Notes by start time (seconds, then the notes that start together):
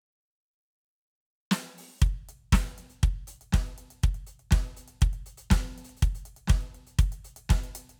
1.51 snare
1.67 snare
1.70 snare
1.78 open hi-hat
1.98 kick, hi-hat pedal
2.06 closed hi-hat
2.29 closed hi-hat
2.52 kick, snare
2.78 closed hi-hat
2.90 closed hi-hat
3.03 kick, closed hi-hat
3.16 closed hi-hat
3.27 closed hi-hat
3.41 closed hi-hat
3.53 kick, snare
3.66 closed hi-hat
3.78 kick, closed hi-hat
3.91 closed hi-hat
4.03 kick, closed hi-hat
4.14 closed hi-hat
4.24 closed hi-hat, kick
4.39 closed hi-hat
4.51 kick, snare
4.64 closed hi-hat
4.77 closed hi-hat
4.88 closed hi-hat
5.01 kick, closed hi-hat
5.13 closed hi-hat
5.26 closed hi-hat
5.38 closed hi-hat
5.50 kick, snare
5.64 closed hi-hat
5.78 closed hi-hat
5.84 closed hi-hat
5.89 closed hi-hat
5.97 closed hi-hat
6.02 kick, closed hi-hat
6.15 closed hi-hat
6.25 closed hi-hat
6.36 closed hi-hat
6.48 kick, snare
6.61 closed hi-hat
6.75 closed hi-hat
6.87 closed hi-hat
6.99 kick, closed hi-hat
7.12 closed hi-hat
7.24 closed hi-hat, kick
7.36 closed hi-hat
7.49 kick, snare
7.64 closed hi-hat
7.72 kick, closed hi-hat
7.89 closed hi-hat